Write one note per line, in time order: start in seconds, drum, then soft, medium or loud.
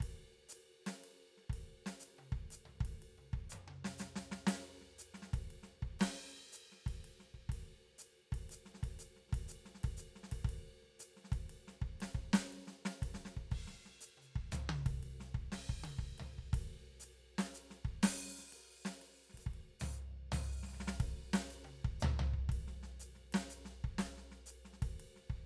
0.01 kick soft
0.01 ride medium
0.50 hi-hat pedal medium
0.50 ride medium
0.87 snare medium
0.87 ride medium
1.04 ride soft
1.38 snare soft
1.50 kick soft
1.50 ride medium
1.87 snare medium
1.87 ride soft
2.00 hi-hat pedal medium
2.00 ride soft
2.19 high tom soft
2.33 kick soft
2.51 hi-hat pedal medium
2.51 ride soft
2.66 floor tom soft
2.81 kick medium
2.86 ride soft
3.03 ride soft
3.19 high tom soft
3.34 kick soft
3.50 hi-hat pedal medium
3.50 floor tom soft
3.69 high tom medium
3.85 snare medium
3.99 snare medium
3.99 hi-hat pedal medium
4.16 snare medium
4.32 snare medium
4.47 snare loud
4.47 ride medium
4.82 snare soft
4.90 snare soft
4.99 hi-hat pedal medium
4.99 ride soft
5.15 snare soft
5.23 snare soft
5.34 kick medium
5.34 ride medium
5.51 ride soft
5.64 snare soft
5.83 kick soft
6.00 snare loud
6.00 crash medium
6.53 hi-hat pedal medium
6.53 ride soft
6.72 snare soft
6.87 kick soft
6.87 ride medium
7.05 ride soft
7.20 snare soft
7.35 kick soft
7.50 kick soft
7.50 ride medium
7.67 snare soft
7.86 snare soft
7.99 hi-hat pedal medium
7.99 ride soft
8.23 snare soft
8.33 kick soft
8.33 ride medium
8.50 hi-hat pedal medium
8.50 ride soft
8.66 snare soft
8.75 snare soft
8.81 kick soft
8.81 snare soft
8.81 ride medium
9.00 hi-hat pedal medium
9.00 ride soft
9.17 snare soft
9.30 kick medium
9.30 snare soft
9.35 ride medium
9.49 hi-hat pedal medium
9.49 ride soft
9.66 snare soft
9.75 snare soft
9.84 kick medium
9.84 ride medium
9.98 hi-hat pedal medium
9.98 ride soft
10.16 snare soft
10.24 snare soft
10.32 kick soft
10.32 ride medium
10.45 kick medium
10.50 ride medium
10.83 snare soft
11.00 hi-hat pedal medium
11.00 ride soft
11.17 snare soft
11.25 snare soft
11.32 kick medium
11.32 ride medium
11.50 ride medium
11.68 snare soft
11.82 kick soft
12.01 snare medium
12.01 ride medium
12.15 kick soft
12.34 snare loud
12.34 ride medium
12.53 ride soft
12.68 snare soft
12.86 snare medium
13.03 kick soft
13.03 ride medium
13.15 snare soft
13.26 snare soft
13.37 kick soft
13.52 kick soft
13.52 crash soft
13.68 snare soft
13.86 snare soft
14.02 hi-hat pedal medium
14.02 ride soft
14.18 high tom soft
14.23 hi-hat pedal soft
14.36 kick soft
14.53 floor tom medium
14.53 hi-hat pedal medium
14.61 closed hi-hat soft
14.63 closed hi-hat soft
14.70 high tom loud
14.87 kick medium
14.87 ride medium
15.04 ride soft
15.21 snare soft
15.35 kick soft
15.53 snare medium
15.53 crash medium
15.70 kick soft
15.84 high tom medium
15.84 ride medium
15.99 kick soft
16.19 floor tom medium
16.19 ride soft
16.39 kick soft
16.54 kick medium
16.54 ride medium
16.74 kick soft
17.01 hi-hat pedal medium
17.05 ride soft
17.39 snare medium
17.39 ride medium
17.55 hi-hat pedal medium
17.55 ride soft
17.71 snare soft
17.85 kick soft
18.04 open hi-hat loud
18.04 snare loud
18.39 snare soft
18.53 ride medium
18.86 snare medium
18.86 ride soft
19.02 ride soft
19.30 snare soft
19.35 kick soft
19.35 ride soft
19.39 snare soft
19.39 hi-hat pedal soft
19.47 kick soft
19.54 ride soft
19.81 open hi-hat medium
19.81 floor tom medium
19.95 hi-hat pedal soft
20.32 open hi-hat medium
20.32 floor tom loud
20.64 snare soft
20.69 snare soft
20.74 snare soft
20.81 snare soft
20.88 snare medium
21.01 kick medium
21.01 ride medium
21.34 snare loud
21.34 ride medium
21.51 hi-hat pedal soft
21.51 ride medium
21.65 high tom soft
21.85 kick medium
22.01 floor tom loud
22.01 hi-hat pedal medium
22.20 floor tom medium
22.34 kick soft
22.50 kick medium
22.50 ride medium
22.68 snare soft
22.84 snare soft
23.00 hi-hat pedal medium
23.00 ride soft
23.16 snare soft
23.33 snare loud
23.33 ride medium
23.51 hi-hat pedal medium
23.51 ride soft
23.66 snare soft
23.85 kick soft
23.99 snare medium
23.99 ride medium
24.18 snare soft
24.32 snare soft
24.47 hi-hat pedal medium
24.51 ride soft
24.66 snare soft
24.74 snare soft
24.83 kick medium
24.83 ride medium
25.01 ride medium
25.17 snare soft
25.30 kick soft